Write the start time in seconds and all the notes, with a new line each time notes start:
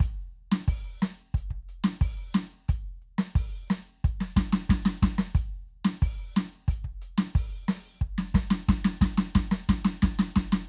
0.01 closed hi-hat, kick
0.52 snare
0.68 open hi-hat, kick
1.01 closed hi-hat, snare, hi-hat pedal
1.35 closed hi-hat, kick
1.51 kick
1.69 closed hi-hat
1.85 snare
2.02 open hi-hat, kick
2.33 snare, hi-hat pedal
2.69 closed hi-hat, kick
3.03 closed hi-hat
3.19 snare
3.36 open hi-hat, kick
3.68 closed hi-hat, snare, hi-hat pedal
4.05 closed hi-hat, kick
4.21 snare
4.37 kick, snare
4.53 snare
4.68 kick, snare, hi-hat pedal
4.86 snare
5.01 kick, snare, hi-hat pedal
5.19 snare
5.36 closed hi-hat, kick
5.70 closed hi-hat
5.85 snare
5.92 cross-stick
6.03 open hi-hat, kick
6.35 closed hi-hat, snare, hi-hat pedal
6.69 closed hi-hat, kick
6.85 kick
7.02 closed hi-hat
7.18 snare
7.36 open hi-hat, kick
7.69 open hi-hat, snare
7.95 snare
7.99 kick, hi-hat pedal
8.19 snare
8.35 kick, snare
8.51 snare
8.69 kick, snare
8.85 snare
9.02 kick, snare
9.18 snare
9.36 kick, snare
9.52 snare
9.70 kick, snare
9.85 snare
10.03 kick, snare
10.20 snare
10.37 kick, snare
10.53 snare